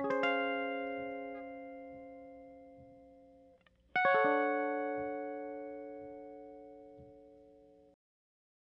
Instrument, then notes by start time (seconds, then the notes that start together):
electric guitar
0.00 C#4
0.05 G#4
0.11 C5
0.24 F5
3.96 F#5
4.06 C#5
4.15 A4
4.25 D4